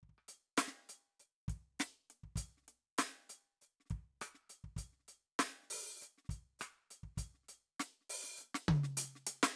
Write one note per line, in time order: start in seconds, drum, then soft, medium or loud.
0.04 kick soft
0.09 kick soft
0.18 cross-stick soft
0.28 closed hi-hat soft
0.57 open hi-hat medium
0.57 snare loud
0.57 hi-hat pedal soft
0.68 snare soft
0.89 closed hi-hat medium
1.20 open hi-hat soft
1.20 hi-hat pedal soft
1.48 kick soft
1.48 snare soft
1.48 closed hi-hat soft
1.79 open hi-hat medium
1.79 snare medium
1.79 hi-hat pedal medium
2.10 closed hi-hat soft
2.23 kick soft
2.36 closed hi-hat medium
2.36 kick soft
2.57 snare soft
2.62 snare soft
2.68 closed hi-hat soft
2.98 closed hi-hat medium
2.98 snare medium
3.29 closed hi-hat medium
3.61 open hi-hat soft
3.61 hi-hat pedal soft
3.80 snare soft
3.85 snare soft
3.90 kick soft
3.90 closed hi-hat soft
3.99 kick soft
4.21 open hi-hat medium
4.21 cross-stick medium
4.21 hi-hat pedal soft
4.34 snare soft
4.49 closed hi-hat soft
4.64 kick soft
4.76 closed hi-hat medium
4.76 kick soft
4.92 snare soft
4.99 snare soft
5.08 closed hi-hat soft
5.39 closed hi-hat medium
5.39 snare loud
5.63 snare soft
5.70 open hi-hat medium
6.01 closed hi-hat soft
6.01 hi-hat pedal medium
6.18 snare soft
6.25 snare soft
6.29 closed hi-hat soft
6.29 kick soft
6.59 closed hi-hat medium
6.59 cross-stick medium
6.59 hi-hat pedal soft
6.90 closed hi-hat soft
7.03 kick soft
7.15 closed hi-hat medium
7.15 kick soft
7.15 snare soft
7.34 snare soft
7.43 snare soft
7.48 closed hi-hat soft
7.79 closed hi-hat medium
7.79 snare medium
8.01 snare soft
8.09 open hi-hat loud
8.23 snare soft
8.28 snare soft
8.38 closed hi-hat soft
8.38 hi-hat pedal soft
8.54 snare medium
8.68 kick soft
8.68 high tom loud
8.75 kick soft
8.78 kick soft
8.83 snare soft
8.97 closed hi-hat loud
9.15 snare soft
9.27 closed hi-hat loud
9.43 snare loud